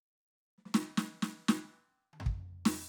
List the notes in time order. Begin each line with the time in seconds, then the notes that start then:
0.58 snare
0.66 snare
0.70 snare
0.75 snare
0.98 snare
1.23 snare
1.49 snare
2.14 high tom
2.21 floor tom
2.27 kick
2.66 open hi-hat, snare